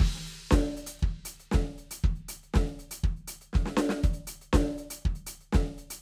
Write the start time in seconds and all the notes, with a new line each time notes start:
0.01 kick, crash
0.16 snare
0.27 closed hi-hat
0.52 kick, snare
0.78 closed hi-hat
0.87 closed hi-hat
1.00 kick, closed hi-hat
1.26 closed hi-hat
1.41 closed hi-hat
1.52 kick, snare
1.66 closed hi-hat
1.79 closed hi-hat
1.92 closed hi-hat
2.04 kick, closed hi-hat
2.16 closed hi-hat
2.29 closed hi-hat
2.44 closed hi-hat
2.55 kick, snare
2.67 closed hi-hat
2.80 closed hi-hat
2.92 closed hi-hat
3.04 kick, closed hi-hat
3.17 closed hi-hat
3.26 closed hi-hat, kick
3.42 closed hi-hat
3.54 kick, snare
3.67 snare
3.78 snare
3.90 snare
4.04 closed hi-hat, kick
4.14 closed hi-hat
4.28 closed hi-hat
4.42 closed hi-hat
4.54 kick, snare
4.76 closed hi-hat, kick
4.91 closed hi-hat
5.03 kick, closed hi-hat
5.16 closed hi-hat
5.28 closed hi-hat
5.41 closed hi-hat
5.53 kick, snare
5.66 closed hi-hat
5.76 closed hi-hat, kick
5.91 closed hi-hat